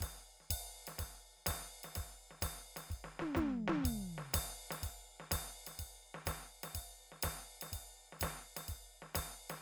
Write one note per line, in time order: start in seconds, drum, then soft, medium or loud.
0.01 kick soft
0.01 snare soft
0.01 hi-hat pedal soft
0.01 ride medium
0.41 snare soft
0.51 kick soft
0.51 hi-hat pedal medium
0.51 ride loud
0.87 snare soft
0.87 ride medium
0.99 kick soft
0.99 snare soft
0.99 ride medium
1.37 snare soft
1.47 kick soft
1.47 snare soft
1.47 hi-hat pedal medium
1.47 ride loud
1.51 snare soft
1.84 snare soft
1.84 ride medium
1.96 kick soft
1.96 snare soft
1.96 ride medium
2.31 snare soft
2.42 kick soft
2.42 snare soft
2.42 hi-hat pedal medium
2.42 ride loud
2.77 snare soft
2.77 ride medium
2.89 kick soft
2.89 hi-hat pedal soft
2.89 ride soft
3.05 snare soft
3.20 snare soft
3.20 floor tom medium
3.35 kick soft
3.35 snare medium
3.35 floor tom medium
3.35 hi-hat pedal medium
3.68 snare medium
3.68 floor tom medium
3.85 kick soft
3.85 ride medium
4.18 snare soft
4.34 kick soft
4.34 snare soft
4.34 hi-hat pedal medium
4.34 ride loud
4.71 snare soft
4.71 ride medium
4.83 kick soft
4.83 ride medium
5.20 snare soft
5.32 kick soft
5.32 snare soft
5.32 hi-hat pedal medium
5.32 ride loud
5.67 snare soft
5.67 ride medium
5.79 kick soft
5.79 ride medium
6.15 snare soft
6.26 kick soft
6.26 snare soft
6.26 hi-hat pedal medium
6.26 ride medium
6.64 snare soft
6.64 ride medium
6.75 kick soft
6.75 ride medium
7.12 snare soft
7.23 kick soft
7.23 snare medium
7.23 hi-hat pedal medium
7.23 ride loud
7.62 snare soft
7.62 ride medium
7.73 kick soft
7.73 ride medium
8.13 snare soft
8.20 kick soft
8.20 snare medium
8.20 hi-hat pedal medium
8.20 ride medium
8.57 snare soft
8.57 ride medium
8.68 kick soft
8.68 hi-hat pedal soft
8.68 ride medium
9.03 snare soft
9.15 kick soft
9.15 snare soft
9.15 hi-hat pedal medium
9.15 ride loud
9.50 snare soft
9.50 ride medium